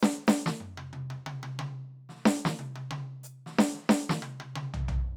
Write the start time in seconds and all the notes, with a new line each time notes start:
0.00 snare, hi-hat pedal
0.12 snare
0.17 snare
0.22 snare
0.25 snare, hi-hat pedal
0.28 snare
0.46 snare
0.60 mid tom
0.77 high tom
0.93 high tom
1.10 high tom
1.26 high tom
1.43 high tom
1.59 high tom
2.09 snare
2.15 snare
2.19 snare
2.23 snare
2.25 snare
2.45 snare
2.59 high tom
2.76 high tom
2.91 high tom
3.23 hi-hat pedal
3.46 snare
3.51 snare
3.55 snare
3.58 snare
3.74 snare
3.78 snare
3.81 snare
3.84 snare
3.89 snare
4.09 snare
4.22 high tom
4.40 high tom
4.56 high tom
4.74 floor tom
4.88 floor tom